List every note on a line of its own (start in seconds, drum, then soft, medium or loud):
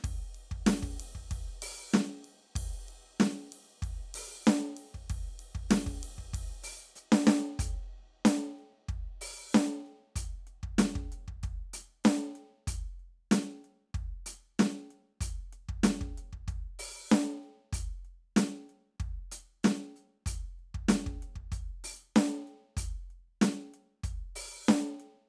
0.01 kick medium
0.01 snare soft
0.01 ride medium
0.35 ride soft
0.51 kick medium
0.65 snare loud
0.65 hi-hat pedal soft
0.65 ride loud
0.83 kick medium
1.00 ride medium
1.15 kick soft
1.31 kick medium
1.31 ride medium
1.62 open hi-hat loud
1.62 ride loud
1.93 snare loud
1.93 hi-hat pedal medium
1.93 ride soft
2.25 ride soft
2.56 kick medium
2.56 ride loud
2.89 ride soft
3.20 snare loud
3.20 ride medium
3.52 ride medium
3.82 kick medium
3.82 ride medium
4.14 open hi-hat loud
4.14 ride medium
4.47 snare loud
4.47 hi-hat pedal medium
4.47 ride medium
4.77 ride medium
4.94 kick soft
5.10 kick medium
5.10 ride medium
5.39 ride medium
5.55 kick medium
5.69 snare loud
5.69 hi-hat pedal soft
5.69 ride loud
5.87 kick medium
6.03 ride medium
6.18 kick soft
6.30 kick medium
6.30 hi-hat pedal soft
6.35 ride medium
6.63 open hi-hat loud
6.63 hi-hat pedal soft
6.96 hi-hat pedal medium
7.12 snare loud
7.27 snare loud
7.59 closed hi-hat loud
7.59 kick medium
7.93 closed hi-hat soft
8.25 closed hi-hat loud
8.25 snare loud
8.59 closed hi-hat soft
8.89 kick medium
8.89 closed hi-hat soft
9.21 open hi-hat loud
9.53 snare loud
9.53 closed hi-hat medium
9.53 hi-hat pedal medium
9.86 closed hi-hat soft
10.16 closed hi-hat loud
10.16 kick medium
10.47 closed hi-hat soft
10.63 kick medium
10.79 closed hi-hat loud
10.79 snare loud
10.96 kick medium
11.12 closed hi-hat medium
11.28 kick soft
11.43 kick medium
11.43 closed hi-hat medium
11.74 open hi-hat loud
12.04 snare loud
12.04 closed hi-hat medium
12.04 hi-hat pedal medium
12.36 closed hi-hat soft
12.68 closed hi-hat loud
12.68 kick medium
13.00 closed hi-hat soft
13.31 closed hi-hat loud
13.31 snare loud
13.64 closed hi-hat soft
13.94 kick medium
13.94 closed hi-hat soft
14.26 open hi-hat loud
14.59 snare loud
14.59 closed hi-hat medium
14.59 hi-hat pedal medium
14.91 closed hi-hat soft
15.21 closed hi-hat loud
15.21 kick medium
15.53 closed hi-hat soft
15.69 kick medium
15.84 closed hi-hat loud
15.84 snare loud
16.01 kick medium
16.18 closed hi-hat medium
16.33 kick soft
16.48 kick medium
16.48 closed hi-hat medium
16.79 open hi-hat loud
17.11 snare loud
17.11 closed hi-hat soft
17.11 hi-hat pedal medium
17.44 closed hi-hat soft
17.73 closed hi-hat loud
17.73 kick medium
18.05 closed hi-hat soft
18.37 closed hi-hat loud
18.37 snare loud
18.69 closed hi-hat soft
19.00 kick medium
19.00 closed hi-hat soft
19.32 open hi-hat loud
19.64 closed hi-hat medium
19.64 snare loud
19.64 hi-hat pedal medium
19.96 closed hi-hat soft
20.26 closed hi-hat loud
20.26 kick medium
20.59 closed hi-hat soft
20.75 kick medium
20.89 closed hi-hat loud
20.89 snare loud
21.06 kick medium
21.23 closed hi-hat soft
21.36 kick soft
21.52 closed hi-hat medium
21.52 kick medium
21.84 open hi-hat loud
22.16 snare loud
22.16 hi-hat pedal medium
22.48 closed hi-hat soft
22.77 closed hi-hat loud
22.77 kick medium
23.11 closed hi-hat soft
23.42 closed hi-hat loud
23.42 snare loud
23.74 closed hi-hat soft
24.04 closed hi-hat medium
24.04 kick medium
24.36 open hi-hat loud
24.69 snare loud
24.69 hi-hat pedal medium
25.00 closed hi-hat soft